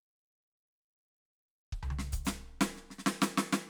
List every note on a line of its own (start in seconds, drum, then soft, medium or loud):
1.72 kick soft
1.83 floor tom loud
1.90 high tom medium
1.99 snare medium
2.12 closed hi-hat medium
2.12 kick medium
2.25 snare loud
2.25 hi-hat pedal medium
2.61 snare loud
2.74 snare soft
2.74 hi-hat pedal soft
2.90 snare soft
2.98 snare soft
3.06 snare loud
3.21 snare loud
3.21 hi-hat pedal medium
3.37 snare loud
3.52 snare loud